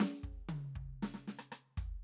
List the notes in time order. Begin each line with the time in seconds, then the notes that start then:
0.00 snare
0.23 kick
0.49 high tom
0.76 kick
1.03 snare
1.14 snare
1.28 snare
1.39 cross-stick
1.52 cross-stick
1.77 open hi-hat, kick